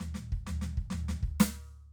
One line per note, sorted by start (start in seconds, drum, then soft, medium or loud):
0.01 snare soft
0.01 floor tom medium
0.15 snare soft
0.15 floor tom soft
0.33 kick soft
0.47 snare soft
0.47 floor tom medium
0.62 snare soft
0.62 floor tom soft
0.78 kick soft
0.91 snare soft
0.91 floor tom medium
1.09 snare soft
1.09 floor tom medium
1.23 kick soft
1.40 open hi-hat loud
1.40 snare loud